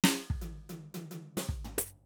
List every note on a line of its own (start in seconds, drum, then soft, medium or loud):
0.04 snare loud
0.30 kick medium
0.41 high tom loud
0.69 high tom loud
0.94 high tom loud
1.11 high tom loud
1.37 snare loud
1.49 kick medium
1.64 floor tom medium
1.78 high tom loud